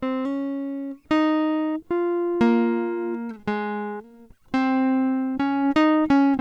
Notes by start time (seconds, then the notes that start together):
0.04 C4
0.27 C#4
1.12 D#4
1.93 F4
2.42 A#3
3.49 G#3
4.02 A#3
4.55 C4
5.41 C#4
5.78 D#4
6.12 C#4